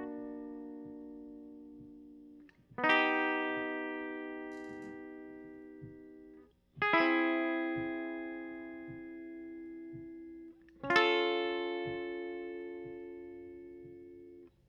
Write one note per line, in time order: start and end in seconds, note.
2.78 6.50 B3
2.84 6.47 D#4
2.89 6.45 G4
6.82 9.66 G#4
6.93 10.54 E4
7.00 10.54 C4
10.84 14.51 C#4
10.90 14.49 F4
10.96 14.17 A4